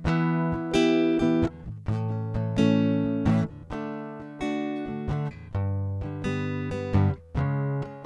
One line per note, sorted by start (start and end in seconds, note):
0.07 0.55 E3
0.07 0.55 B3
0.07 0.76 E4
0.56 1.22 E3
0.56 0.77 B3
0.73 1.24 B3
0.73 1.21 E4
0.73 1.19 G4
0.73 1.21 B4
1.19 1.52 E4
1.19 1.51 G4
1.24 1.50 E3
1.24 1.52 B3
1.88 2.36 A2
1.88 2.34 E3
2.10 2.33 C#4
2.35 2.62 A2
2.35 2.62 E3
2.35 2.57 C#4
2.60 3.07 A2
2.60 3.06 E3
2.60 3.28 A3
2.60 3.29 C#4
3.06 3.26 A2
3.06 3.26 E3
3.27 3.47 A2
3.27 3.45 E3
3.27 3.45 A3
3.27 3.48 C#4
3.45 3.67 A2
3.45 3.68 D3
3.72 4.21 D3
3.72 4.22 A3
3.72 4.44 D4
4.21 4.91 D3
4.21 4.42 A3
4.42 4.88 A3
4.42 4.87 D4
4.42 5.25 F#4
4.87 5.10 A3
4.87 5.12 D4
4.92 5.09 D3
5.11 5.29 D3
5.11 5.29 A3
5.11 5.32 D4
5.29 5.52 A2
5.29 5.52 D3
5.34 5.53 E2
5.56 6.02 G2
6.03 6.29 G2
6.03 6.28 D3
6.03 6.24 G3
6.26 6.73 D3
6.26 6.73 G3
6.26 6.72 B3
6.30 6.74 G2
6.73 6.95 G2
6.73 6.95 D3
6.73 6.96 G3
6.73 6.96 B3
6.95 7.17 G2
6.95 7.19 D3
6.95 7.19 G3
6.95 7.15 B3
7.38 7.83 C#3
7.38 7.84 G#3
7.43 8.05 C#4
7.84 7.99 C#3
7.84 8.05 G#3